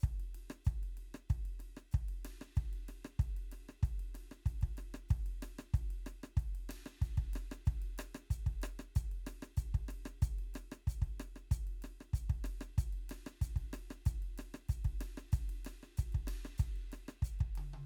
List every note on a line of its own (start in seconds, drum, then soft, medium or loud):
0.01 kick medium
0.01 hi-hat pedal soft
0.05 ride soft
0.21 ride soft
0.36 ride medium
0.51 cross-stick medium
0.66 kick medium
0.66 hi-hat pedal soft
0.66 ride soft
0.84 ride soft
0.98 cross-stick soft
0.98 ride soft
1.15 cross-stick medium
1.30 kick medium
1.30 hi-hat pedal soft
1.30 ride soft
1.46 ride soft
1.60 cross-stick soft
1.60 ride soft
1.78 cross-stick soft
1.92 kick medium
1.92 hi-hat pedal soft
1.92 ride soft
2.10 ride soft
2.26 cross-stick medium
2.26 ride medium
2.42 cross-stick medium
2.56 kick medium
2.56 hi-hat pedal soft
2.56 ride soft
2.74 ride soft
2.89 cross-stick soft
2.89 ride medium
3.06 cross-stick medium
3.20 kick medium
3.20 hi-hat pedal soft
3.20 ride soft
3.38 ride soft
3.53 cross-stick soft
3.53 ride medium
3.70 cross-stick soft
3.84 kick medium
3.84 hi-hat pedal soft
3.84 ride soft
4.00 ride soft
4.15 cross-stick soft
4.15 ride medium
4.32 cross-stick soft
4.47 kick soft
4.47 hi-hat pedal soft
4.47 ride soft
4.62 kick soft
4.62 ride soft
4.78 cross-stick soft
4.78 ride soft
4.95 cross-stick medium
5.10 kick medium
5.10 hi-hat pedal soft
5.10 ride soft
5.27 ride soft
5.43 cross-stick medium
5.43 ride medium
5.60 cross-stick medium
5.75 kick medium
5.75 hi-hat pedal soft
5.75 ride soft
5.91 ride soft
6.07 cross-stick medium
6.07 ride soft
6.24 cross-stick medium
6.38 kick medium
6.38 hi-hat pedal soft
6.38 ride soft
6.56 ride soft
6.70 cross-stick medium
6.70 ride medium
6.87 cross-stick medium
7.02 kick medium
7.02 hi-hat pedal soft
7.02 ride soft
7.18 kick medium
7.18 ride soft
7.34 cross-stick medium
7.34 ride medium
7.52 cross-stick medium
7.66 kick medium
7.66 hi-hat pedal soft
7.66 ride soft
7.83 ride soft
7.99 cross-stick medium
7.99 ride medium
8.16 cross-stick medium
8.31 kick soft
8.31 hi-hat pedal medium
8.31 ride soft
8.47 kick soft
8.47 ride soft
8.63 cross-stick medium
8.63 ride soft
8.80 cross-stick medium
8.96 kick medium
8.96 hi-hat pedal medium
8.96 ride soft
9.13 ride soft
9.28 cross-stick medium
9.28 ride medium
9.43 cross-stick medium
9.58 kick soft
9.58 hi-hat pedal medium
9.58 ride soft
9.75 kick medium
9.75 ride soft
9.89 cross-stick medium
9.89 ride medium
10.06 cross-stick medium
10.23 kick medium
10.23 hi-hat pedal medium
10.23 ride soft
10.40 ride soft
10.55 cross-stick medium
10.55 ride soft
10.73 cross-stick medium
10.88 kick soft
10.88 hi-hat pedal medium
10.88 ride soft
11.03 kick soft
11.03 ride soft
11.21 cross-stick medium
11.21 ride soft
11.37 cross-stick soft
11.52 kick medium
11.52 hi-hat pedal medium
11.52 ride soft
11.68 ride soft
11.83 cross-stick medium
11.83 ride medium
12.01 cross-stick soft
12.14 kick soft
12.14 hi-hat pedal medium
12.14 ride soft
12.30 kick medium
12.30 ride soft
12.45 cross-stick medium
12.45 ride medium
12.62 cross-stick medium
12.79 kick medium
12.79 hi-hat pedal medium
12.79 ride soft
12.94 ride soft
13.10 cross-stick medium
13.10 ride medium
13.27 cross-stick medium
13.42 kick soft
13.42 hi-hat pedal medium
13.42 ride soft
13.57 kick soft
13.57 ride soft
13.74 cross-stick medium
13.74 ride medium
13.91 cross-stick medium
14.07 kick medium
14.07 hi-hat pedal medium
14.07 ride soft
14.23 ride soft
14.39 cross-stick medium
14.39 ride medium
14.55 cross-stick medium
14.70 kick soft
14.70 hi-hat pedal soft
14.70 ride soft
14.86 kick soft
14.86 ride soft
15.02 cross-stick medium
15.02 ride medium
15.18 cross-stick medium
15.33 kick medium
15.33 hi-hat pedal soft
15.33 ride medium
15.50 ride soft
15.66 cross-stick medium
15.66 ride medium
15.84 cross-stick soft
15.98 kick soft
15.98 hi-hat pedal medium
15.98 ride medium
16.13 kick soft
16.13 ride soft
16.28 cross-stick medium
16.28 ride medium
16.46 cross-stick medium
16.59 kick medium
16.59 hi-hat pedal soft
16.59 ride soft
16.77 ride soft
16.93 cross-stick medium
16.93 ride medium
17.09 cross-stick medium
17.23 kick soft
17.23 hi-hat pedal medium
17.23 ride soft
17.40 kick medium
17.40 ride soft
17.56 high tom medium
17.56 ride medium
17.74 high tom medium